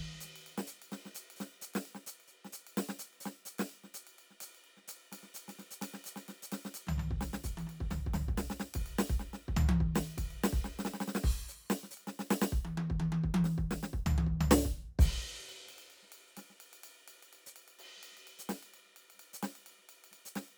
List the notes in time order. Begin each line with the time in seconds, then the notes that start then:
0.13 snare
0.21 snare, hi-hat pedal, ride
0.36 hi-hat pedal, ride
0.47 ride
0.58 snare
0.67 hi-hat pedal, ride
0.82 ride
0.92 snare, ride
1.06 snare
1.15 hi-hat pedal, ride
1.31 ride
1.37 hi-hat pedal
1.41 snare, ride
1.62 hi-hat pedal, ride
1.74 snare, ride
1.86 ride
1.95 snare
2.07 hi-hat pedal, ride
2.21 ride
2.28 hi-hat pedal
2.32 ride
2.45 snare
2.53 hi-hat pedal, ride
2.67 ride
2.78 snare, ride
2.89 snare
2.99 hi-hat pedal, ride
3.13 ride
3.21 hi-hat pedal
3.25 snare, ride
3.46 hi-hat pedal, ride
3.59 snare, ride
3.70 ride
3.84 snare
3.94 hi-hat pedal, ride
4.07 ride
4.19 ride
4.31 snare
4.41 hi-hat pedal, ride
4.55 ride
4.64 ride
4.77 snare
4.84 snare
4.88 hi-hat pedal, ride
5.12 snare, ride
5.23 snare
5.35 hi-hat pedal, ride
5.48 snare, ride
5.59 snare, ride
5.71 hi-hat pedal
5.82 snare, ride
5.94 snare
6.05 hi-hat pedal, ride
6.16 snare, ride
6.29 snare, ride
6.43 hi-hat pedal
6.52 snare, ride
6.65 snare
6.74 hi-hat pedal, ride
6.87 floor tom, high tom
6.98 floor tom, high tom
7.11 kick
7.21 snare, ride
7.34 snare
7.44 kick, hi-hat pedal, ride
7.58 high tom, ride
7.67 high tom, ride
7.81 kick
7.91 snare, floor tom
8.07 kick
8.14 snare, floor tom
8.29 kick
8.38 snare, ride
8.50 snare
8.60 snare
8.74 kick, ride
8.86 ride
8.99 snare
9.10 kick, ride
9.20 snare
9.34 snare
9.49 kick
9.57 floor tom
9.69 high tom
9.81 kick
9.95 snare, ride
10.18 kick, ride
10.31 ride
10.44 snare
10.53 kick, ride
10.65 snare
10.79 snare
10.85 snare
10.94 snare
11.01 snare
11.08 snare
11.15 snare
11.24 kick, crash
11.49 hi-hat pedal
11.70 snare, ride
11.84 snare
11.91 hi-hat pedal
11.98 ride
12.08 snare
12.20 snare
12.31 snare
12.42 snare
12.53 kick
12.65 high tom
12.78 high tom
12.90 kick
13.00 high tom
13.12 high tom
13.24 kick
13.35 high tom
13.45 snare
13.58 kick
13.71 snare
13.83 snare
13.94 kick
14.07 floor tom
14.18 high tom
14.27 kick
14.41 floor tom
14.51 snare
14.65 kick
14.99 open hi-hat, kick, ride
15.50 ride
15.67 snare, ride
15.70 snare
15.79 ride
15.90 ride
16.03 snare
16.12 ride
16.37 snare, ride
16.50 snare
16.61 ride
16.73 ride
16.84 ride
17.08 ride
17.23 ride
17.33 ride
17.47 hi-hat pedal
17.56 ride
17.68 ride
17.79 ride
17.97 snare
18.03 ride
18.12 snare
18.17 snare, ride
18.39 hi-hat pedal
18.50 snare, ride
18.63 ride
18.74 ride
18.86 snare
18.90 snare
18.97 ride
19.10 ride
19.15 snare
19.17 snare, ride
19.34 hi-hat pedal
19.43 snare, ride
19.56 ride
19.67 ride
19.79 snare
19.89 ride
20.04 ride
20.11 snare, ride
20.26 hi-hat pedal
20.36 snare, ride
20.43 hi-hat pedal
20.49 ride